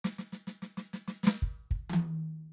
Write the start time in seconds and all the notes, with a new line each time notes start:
0.05 snare
0.19 snare
0.33 snare
0.47 snare
0.63 snare
0.78 snare
0.94 snare
1.08 snare
1.24 snare
1.27 snare
1.43 kick
1.71 kick
1.90 high tom
1.94 high tom